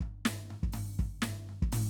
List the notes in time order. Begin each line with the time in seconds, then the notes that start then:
0.01 kick, floor tom
0.25 snare, floor tom
0.50 floor tom
0.63 kick
0.72 open hi-hat, floor tom
0.99 kick, floor tom
1.22 snare, floor tom
1.49 floor tom
1.62 kick
1.72 open hi-hat, floor tom